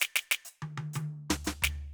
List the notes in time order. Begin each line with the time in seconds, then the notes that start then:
0.00 snare, hi-hat pedal
0.16 snare, hi-hat pedal
0.31 snare
0.45 hi-hat pedal
0.62 high tom
0.77 high tom
0.93 hi-hat pedal, high tom
1.30 snare, floor tom
1.44 snare, floor tom, hi-hat pedal
1.62 snare, floor tom